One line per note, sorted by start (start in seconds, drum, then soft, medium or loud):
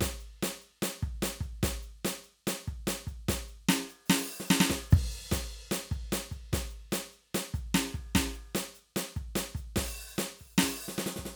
0.01 closed hi-hat loud
0.01 kick medium
0.01 snare loud
0.20 closed hi-hat soft
0.43 closed hi-hat loud
0.43 snare loud
0.61 closed hi-hat soft
0.83 closed hi-hat loud
0.83 snare loud
1.02 kick medium
1.02 closed hi-hat soft
1.23 closed hi-hat loud
1.23 snare loud
1.41 kick medium
1.41 closed hi-hat soft
1.63 closed hi-hat loud
1.63 kick medium
1.63 snare loud
1.83 closed hi-hat soft
2.05 closed hi-hat loud
2.05 snare loud
2.24 closed hi-hat soft
2.47 closed hi-hat loud
2.47 snare loud
2.67 kick medium
2.67 closed hi-hat soft
2.87 closed hi-hat loud
2.87 snare loud
3.07 kick soft
3.07 closed hi-hat soft
3.29 closed hi-hat loud
3.29 kick medium
3.29 snare loud
3.48 closed hi-hat soft
3.69 closed hi-hat loud
3.69 snare loud
3.89 closed hi-hat soft
4.06 hi-hat pedal medium
4.10 open hi-hat loud
4.10 snare loud
4.29 open hi-hat medium
4.40 snare medium
4.47 snare loud
4.47 hi-hat pedal medium
4.70 kick soft
4.70 snare loud
4.91 kick loud
4.91 hi-hat pedal medium
4.91 crash loud
4.96 snare soft
5.11 closed hi-hat soft
5.32 closed hi-hat loud
5.32 kick medium
5.32 snare loud
5.32 hi-hat pedal medium
5.51 closed hi-hat soft
5.72 closed hi-hat loud
5.72 snare loud
5.92 kick medium
5.92 closed hi-hat soft
6.12 closed hi-hat loud
6.12 snare loud
6.32 kick soft
6.32 closed hi-hat soft
6.53 closed hi-hat loud
6.53 kick medium
6.53 snare loud
6.53 hi-hat pedal soft
6.71 closed hi-hat soft
6.91 closed hi-hat loud
6.91 snare loud
6.91 hi-hat pedal soft
7.13 closed hi-hat soft
7.35 closed hi-hat loud
7.35 snare loud
7.54 closed hi-hat medium
7.54 kick medium
7.75 closed hi-hat loud
7.75 snare loud
7.95 kick medium
7.95 closed hi-hat soft
8.15 open hi-hat loud
8.15 kick medium
8.15 snare loud
8.15 hi-hat pedal soft
8.35 closed hi-hat soft
8.55 closed hi-hat loud
8.55 snare loud
8.74 closed hi-hat soft
8.96 closed hi-hat loud
8.96 snare loud
9.16 kick medium
9.16 closed hi-hat soft
9.36 closed hi-hat loud
9.36 snare loud
9.55 closed hi-hat medium
9.55 kick medium
9.76 open hi-hat loud
9.76 kick medium
9.76 snare loud
9.97 open hi-hat soft
10.16 closed hi-hat loud
10.16 snare loud
10.16 hi-hat pedal medium
10.37 open hi-hat soft
10.37 kick soft
10.58 open hi-hat loud
10.58 snare loud
10.63 kick soft
10.78 open hi-hat medium
10.88 snare medium
10.98 snare loud
10.98 hi-hat pedal medium
11.06 snare loud
11.16 kick soft
11.16 snare medium
11.26 snare medium